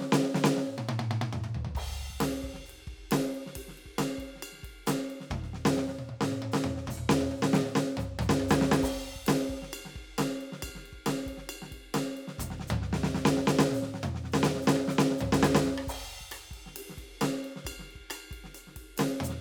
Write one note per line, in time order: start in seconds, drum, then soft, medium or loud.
0.01 snare medium
0.12 snare loud
0.23 snare soft
0.35 snare loud
0.44 snare loud
0.57 snare medium
0.68 high tom medium
0.78 high tom loud
0.89 high tom loud
1.00 high tom loud
1.11 high tom loud
1.22 high tom loud
1.33 mid tom loud
1.44 mid tom medium
1.55 floor tom loud
1.65 floor tom loud
1.75 kick medium
1.75 hi-hat pedal soft
1.75 crash loud
1.75 floor tom soft
1.89 kick soft
2.10 kick soft
2.15 kick soft
2.21 snare loud
2.21 hi-hat pedal medium
2.21 ride loud
2.44 kick soft
2.44 ride soft
2.50 kick soft
2.54 snare soft
2.66 hi-hat pedal soft
2.66 ride medium
2.87 kick soft
2.94 kick soft
3.11 snare loud
3.11 hi-hat pedal soft
3.11 ride loud
3.35 ride soft
3.47 snare soft
3.56 kick soft
3.56 hi-hat pedal soft
3.56 ride loud
3.68 snare soft
3.78 ride soft
3.86 kick soft
3.99 snare medium
3.99 hi-hat pedal soft
3.99 ride bell loud
4.18 kick soft
4.18 ride medium
4.24 kick soft
4.36 snare soft
4.43 hi-hat pedal medium
4.43 ride bell loud
4.53 snare soft
4.59 snare soft
4.64 kick soft
4.64 ride medium
4.69 kick soft
4.87 snare loud
4.87 hi-hat pedal loud
4.87 ride bell loud
4.95 snare soft
5.10 ride soft
5.20 snare soft
5.31 kick medium
5.31 mid tom loud
5.38 kick soft
5.43 snare soft
5.54 snare soft
5.66 snare loud
5.74 snare medium
5.74 hi-hat pedal soft
5.88 snare soft
5.99 high tom medium
6.09 high tom medium
6.21 snare loud
6.26 hi-hat pedal soft
6.32 high tom medium
6.42 high tom medium
6.52 snare loud
6.52 hi-hat pedal medium
6.64 mid tom loud
6.77 snare soft
6.87 kick soft
6.87 hi-hat pedal medium
6.87 mid tom loud
7.10 snare loud
7.21 mid tom medium
7.32 mid tom medium
7.38 hi-hat pedal soft
7.43 snare loud
7.53 snare loud
7.59 hi-hat pedal soft
7.64 snare soft
7.76 snare loud
7.76 hi-hat pedal soft
7.97 hi-hat pedal medium
7.97 floor tom loud
8.19 hi-hat pedal medium
8.19 floor tom loud
8.30 snare loud
8.40 cross-stick medium
8.49 snare loud
8.49 hi-hat pedal medium
8.62 snare loud
8.72 snare loud
8.83 kick medium
8.83 hi-hat pedal loud
8.83 crash loud
8.91 kick soft
8.91 cross-stick soft
8.96 kick soft
9.16 kick soft
9.22 kick soft
9.25 kick soft
9.25 snare loud
9.25 hi-hat pedal medium
9.25 ride loud
9.49 kick soft
9.49 ride soft
9.62 snare soft
9.73 hi-hat pedal medium
9.73 ride bell loud
9.85 snare soft
9.96 kick soft
9.96 ride soft
10.18 snare loud
10.18 hi-hat pedal medium
10.18 ride bell loud
10.41 ride soft
10.52 snare medium
10.63 kick soft
10.63 hi-hat pedal medium
10.63 ride bell loud
10.69 kick soft
10.75 snare soft
10.86 ride soft
10.93 kick soft
11.06 snare medium
11.06 hi-hat pedal medium
11.06 ride bell loud
11.27 kick soft
11.27 ride medium
11.33 kick soft
11.38 snare soft
11.49 hi-hat pedal medium
11.49 ride bell loud
11.62 snare soft
11.72 kick soft
11.72 ride medium
11.77 kick soft
11.94 snare medium
11.94 hi-hat pedal medium
11.94 ride bell loud
12.17 ride soft
12.28 snare medium
12.39 kick soft
12.39 hi-hat pedal loud
12.39 mid tom medium
12.45 kick soft
12.51 snare medium
12.60 snare medium
12.68 hi-hat pedal medium
12.68 floor tom loud
12.82 snare soft
12.93 snare loud
13.04 snare loud
13.15 snare medium
13.26 snare loud
13.37 snare medium
13.48 snare loud
13.59 snare loud
13.71 hi-hat pedal medium
13.71 high tom medium
13.83 snare medium
13.94 snare medium
14.03 hi-hat pedal soft
14.03 mid tom loud
14.15 snare soft
14.24 snare soft
14.32 snare loud
14.32 hi-hat pedal medium
14.43 snare loud
14.47 snare medium
14.56 snare medium
14.62 hi-hat pedal medium
14.68 snare loud
14.76 cross-stick medium
14.79 cross-stick soft
14.88 snare medium
14.88 hi-hat pedal medium
14.99 snare loud
15.11 snare medium
15.18 hi-hat pedal medium
15.18 floor tom loud
15.33 snare loud
15.41 kick soft
15.41 snare loud
15.41 hi-hat pedal medium
15.55 snare loud
15.63 snare medium
15.63 hi-hat pedal soft
15.78 cross-stick medium
15.87 kick soft
15.87 hi-hat pedal loud
15.87 crash loud
15.94 kick soft
16.21 kick soft
16.26 kick soft
16.32 cross-stick medium
16.32 hi-hat pedal medium
16.32 ride bell medium
16.51 kick soft
16.51 ride soft
16.57 kick soft
16.66 snare soft
16.76 hi-hat pedal medium
16.76 ride loud
16.90 snare soft
16.98 kick soft
16.98 ride medium
17.21 snare loud
17.21 hi-hat pedal medium
17.21 ride bell loud
17.45 ride soft
17.56 snare soft
17.65 kick soft
17.65 hi-hat pedal medium
17.65 ride bell loud
17.71 kick soft
17.80 snare soft
17.91 ride soft
17.95 kick soft
18.00 kick soft
18.10 cross-stick medium
18.10 hi-hat pedal medium
18.10 ride bell loud
18.31 kick soft
18.31 ride medium
18.37 kick soft
18.44 snare soft
18.55 hi-hat pedal medium
18.55 ride bell medium
18.67 snare soft
18.76 kick soft
18.76 ride medium
18.97 snare loud
18.97 hi-hat pedal medium
18.97 ride loud
19.20 hi-hat pedal loud
19.20 mid tom loud
19.30 snare medium